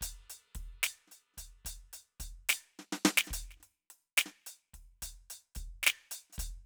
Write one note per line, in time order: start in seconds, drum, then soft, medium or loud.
0.01 closed hi-hat medium
0.01 kick soft
0.30 closed hi-hat soft
0.55 kick soft
0.55 closed hi-hat soft
0.83 closed hi-hat medium
0.83 snare medium
1.07 closed hi-hat soft
1.07 snare soft
1.34 closed hi-hat medium
1.34 kick soft
1.34 snare soft
1.65 closed hi-hat medium
1.65 kick soft
1.93 closed hi-hat soft
2.20 closed hi-hat medium
2.20 kick soft
2.49 closed hi-hat loud
2.49 snare loud
2.79 snare soft
2.92 snare medium
3.05 snare loud
3.17 snare loud
3.24 snare soft
3.24 hi-hat pedal soft
3.31 closed hi-hat medium
3.31 kick soft
3.51 snare soft
3.57 snare soft
3.60 snare soft
3.60 closed hi-hat soft
3.90 closed hi-hat soft
4.17 open hi-hat loud
4.17 snare loud
4.17 hi-hat pedal medium
4.26 snare soft
4.46 closed hi-hat soft
4.74 kick soft
4.74 closed hi-hat soft
5.02 closed hi-hat medium
5.02 kick soft
5.30 closed hi-hat medium
5.55 closed hi-hat soft
5.55 kick soft
5.83 snare medium
5.87 snare loud
6.11 open hi-hat medium
6.30 snare soft
6.30 hi-hat pedal soft
6.38 closed hi-hat medium
6.38 kick soft